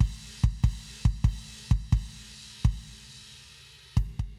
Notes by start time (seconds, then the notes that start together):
0.01 kick, crash
0.44 kick
0.64 kick, crash
1.06 kick
1.25 kick, crash
1.72 kick
1.93 kick, crash
2.65 kick, crash
3.97 kick, ride
4.20 kick